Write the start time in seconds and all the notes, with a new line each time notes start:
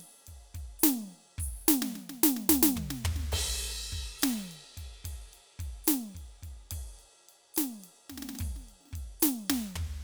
0.01 ride
0.11 snare
0.15 snare
0.17 snare
0.27 kick, ride
0.55 kick, ride
0.80 hi-hat pedal
0.84 snare, ride
0.94 snare
1.08 snare
1.38 kick, hi-hat pedal
1.45 kick
1.68 snare
1.82 snare
1.96 snare
2.10 snare
2.24 snare
2.37 snare
2.49 kick, snare
2.63 snare
2.76 kick, mid tom
2.81 kick
2.91 snare
3.05 kick, floor tom
3.16 snare
3.32 kick, crash
3.39 kick
3.75 snare
3.93 kick, ride
3.99 kick
4.19 hi-hat pedal, ride
4.24 snare
4.48 hi-hat pedal, ride
4.64 snare
4.69 snare
4.74 kick, hi-hat pedal, ride
5.05 kick, ride
5.10 kick
5.32 hi-hat pedal, ride
5.59 kick, ride
5.67 kick
5.84 snare, hi-hat pedal, ride
6.15 kick, ride
6.43 kick, ride
6.47 snare
6.59 snare
6.62 snare
6.70 kick, hi-hat pedal, ride
6.99 ride
7.29 ride
7.54 snare, hi-hat pedal, ride
7.80 hi-hat pedal
7.84 ride
7.94 snare
8.10 kick, snare
8.18 snare
8.23 snare
8.29 snare
8.35 snare, ride
8.40 kick, hi-hat pedal
8.47 kick
8.56 snare
8.69 ride
8.81 snare
8.86 snare
8.89 snare
8.93 kick, ride
9.20 snare, hi-hat pedal, ride
9.50 kick, snare
9.76 kick, floor tom, hi-hat pedal